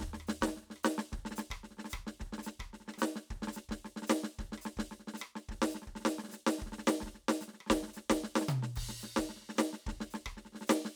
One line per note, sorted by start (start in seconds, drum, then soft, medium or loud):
0.01 kick soft
0.01 snare soft
0.09 kick soft
0.14 snare soft
0.20 cross-stick soft
0.27 snare medium
0.27 hi-hat pedal soft
0.41 kick soft
0.41 snare medium
0.48 snare soft
0.57 snare soft
0.62 snare soft
0.70 snare soft
0.76 cross-stick soft
0.84 snare loud
0.84 hi-hat pedal medium
0.98 snare medium
1.12 kick soft
1.12 snare soft
1.20 kick soft
1.25 snare soft
1.31 snare soft
1.36 snare medium
1.36 hi-hat pedal medium
1.50 kick soft
1.50 cross-stick medium
1.64 snare soft
1.71 snare soft
1.77 snare soft
1.85 snare soft
1.90 kick soft
1.90 cross-stick medium
1.90 hi-hat pedal medium
1.99 kick soft
2.07 snare medium
2.20 kick soft
2.20 snare soft
2.27 kick soft
2.33 snare soft
2.38 snare soft
2.43 snare soft
2.43 hi-hat pedal medium
2.60 kick soft
2.60 cross-stick medium
2.65 kick soft
2.73 snare soft
2.80 snare soft
2.85 snare soft
2.88 snare soft
2.94 cross-stick soft
2.94 snare soft
2.99 snare medium
2.99 hi-hat pedal medium
3.16 snare soft
3.31 kick soft
3.31 snare soft
3.37 kick soft
3.42 snare medium
3.48 snare medium
3.53 snare soft
3.53 hi-hat pedal medium
3.69 kick soft
3.69 snare medium
3.85 snare soft
3.96 snare soft
4.02 snare soft
4.07 snare loud
4.07 hi-hat pedal medium
4.24 snare medium
4.39 kick soft
4.39 snare soft
4.45 kick soft
4.52 snare soft
4.58 cross-stick soft
4.58 hi-hat pedal medium
4.66 snare medium
4.77 kick soft
4.77 snare medium
4.91 snare soft
5.00 snare soft
5.08 snare soft
5.14 snare soft
5.14 hi-hat pedal medium
5.21 cross-stick medium
5.21 snare soft
5.36 snare soft
5.49 kick soft
5.49 snare soft
5.62 snare loud
5.70 hi-hat pedal medium
5.75 snare soft
5.82 snare soft
5.87 kick soft
5.87 snare soft
5.96 snare soft
6.01 snare soft
6.05 snare loud
6.19 snare soft
6.24 snare soft
6.32 snare soft
6.32 hi-hat pedal medium
6.47 snare loud
6.59 kick soft
6.59 snare soft
6.66 kick soft
6.66 snare soft
6.72 snare soft
6.79 snare soft
6.87 snare loud
6.87 hi-hat pedal medium
7.01 kick soft
7.01 snare soft
7.06 snare soft
7.15 snare soft
7.29 snare loud
7.41 snare soft
7.41 hi-hat pedal medium
7.48 snare soft
7.54 snare soft
7.61 cross-stick soft
7.67 snare soft
7.70 kick soft
7.70 snare loud
7.83 snare soft
7.88 snare soft
7.94 snare soft
7.94 hi-hat pedal medium
8.10 kick soft
8.10 snare loud
8.24 snare medium
8.36 snare loud
8.42 snare soft
8.48 hi-hat pedal medium
8.48 mid tom loud
8.63 snare soft
8.76 kick medium
8.76 crash medium
8.85 kick soft
8.89 kick soft
8.89 snare soft
9.00 snare soft
9.00 hi-hat pedal medium
9.17 kick soft
9.17 snare medium
9.29 snare soft
9.36 snare soft
9.42 snare soft
9.49 snare soft
9.56 snare soft
9.56 hi-hat pedal medium
9.59 snare loud
9.73 snare soft
9.87 kick medium
9.87 snare soft
9.93 kick soft
10.01 snare medium
10.11 snare medium
10.11 hi-hat pedal soft
10.26 kick soft
10.26 cross-stick medium
10.32 kick soft
10.37 snare soft
10.45 snare soft
10.52 snare soft
10.55 snare soft
10.61 snare soft
10.67 snare loud
10.67 hi-hat pedal medium
10.85 snare medium